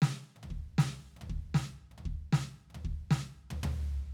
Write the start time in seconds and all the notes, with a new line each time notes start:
0.02 snare
0.36 high tom
0.43 floor tom
0.50 kick
0.78 snare
1.16 high tom
1.21 floor tom
1.30 kick
1.54 snare
1.91 high tom
1.98 floor tom
2.05 kick
2.33 snare
2.70 high tom
2.74 floor tom
2.85 kick
3.11 snare
3.50 floor tom
3.63 floor tom